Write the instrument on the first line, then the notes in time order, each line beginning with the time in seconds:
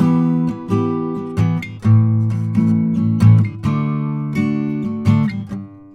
acoustic guitar
0.01 E3 B3 E4 G4 B4
0.50 E3 B3
0.70 B3 E4 G4 B4
0.74 E3
1.15 B3 E4
1.20 E3
1.39 E3 B3 E4 G4
1.60 E2
1.83 A2 E3
2.31 A2 E3 A3
2.56 E3 A3 C#4
2.60 A2
2.96 A2 E3 A3 C#4
3.21 A2 E3 A3
3.26 C#4
3.46 D3
3.65 D3 A3 D4
3.71 F#4
4.36 D3 A3 D4 F#4
4.83 D3 A3 D4
5.07 D3 A3 D4
5.25 D#3
5.31 E2 G3
5.48 G2